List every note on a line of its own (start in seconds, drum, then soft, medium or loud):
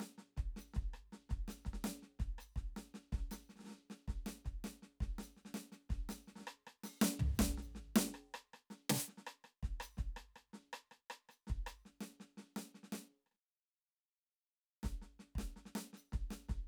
0.01 snare medium
0.18 snare soft
0.36 kick soft
0.36 snare soft
0.56 snare soft
0.56 hi-hat pedal soft
0.74 kick soft
0.74 snare soft
0.93 cross-stick medium
1.12 snare soft
1.29 kick soft
1.29 snare soft
1.48 snare medium
1.48 hi-hat pedal soft
1.65 kick soft
1.65 snare soft
1.73 snare soft
1.84 snare medium
2.02 snare soft
2.19 kick soft
2.19 snare soft
2.38 cross-stick medium
2.38 hi-hat pedal soft
2.56 kick soft
2.56 snare soft
2.76 snare medium
2.94 snare soft
3.12 kick soft
3.12 snare soft
3.16 snare soft
3.31 snare medium
3.31 hi-hat pedal medium
3.49 snare soft
3.56 snare soft
3.59 snare soft
3.64 snare soft
3.67 snare soft
3.69 snare soft
3.90 snare soft
4.08 kick soft
4.08 snare soft
4.26 snare medium
4.26 hi-hat pedal soft
4.45 kick soft
4.45 snare soft
4.64 snare medium
4.64 hi-hat pedal soft
4.82 snare soft
5.00 kick soft
5.00 snare soft
5.18 snare medium
5.22 hi-hat pedal soft
5.36 snare soft
5.45 snare soft
5.54 snare medium
5.72 snare soft
5.72 hi-hat pedal soft
5.89 kick soft
5.89 snare soft
5.91 snare soft
6.09 snare medium
6.09 hi-hat pedal medium
6.27 snare soft
6.35 snare soft
6.38 snare soft
6.40 snare soft
6.47 cross-stick medium
6.67 cross-stick medium
6.83 snare medium
6.83 hi-hat pedal medium
7.01 snare loud
7.19 floor tom medium
7.34 hi-hat pedal soft
7.39 kick soft
7.39 snare loud
7.57 snare soft
7.62 hi-hat pedal soft
7.75 snare soft
7.96 snare loud
8.14 cross-stick medium
8.34 cross-stick medium
8.53 cross-stick medium
8.70 snare soft
8.70 hi-hat pedal soft
8.89 snare loud
9.08 snare soft
9.17 snare soft
9.27 cross-stick medium
9.44 cross-stick soft
9.63 kick soft
9.63 snare soft
9.80 cross-stick medium
9.80 hi-hat pedal soft
9.97 kick soft
9.97 snare soft
10.16 cross-stick medium
10.36 cross-stick medium
10.53 snare soft
10.73 cross-stick medium
10.91 cross-stick soft
11.10 cross-stick medium
11.29 cross-stick soft
11.29 hi-hat pedal soft
11.47 kick soft
11.47 snare soft
11.66 cross-stick medium
11.66 hi-hat pedal soft
11.85 snare soft
12.01 snare medium
12.20 snare soft
12.37 snare soft
12.56 snare medium
12.74 snare soft
12.83 snare soft
12.92 snare medium
13.26 cross-stick soft
13.31 cross-stick soft
13.31 snare soft
14.83 kick soft
14.83 snare medium
15.02 snare soft
15.19 snare soft
15.35 kick soft
15.35 snare medium
15.56 snare soft
15.65 snare soft
15.75 snare medium
15.93 snare soft
15.97 hi-hat pedal soft
16.12 kick soft
16.12 snare soft
16.30 snare medium
16.30 hi-hat pedal soft
16.49 kick soft
16.49 snare soft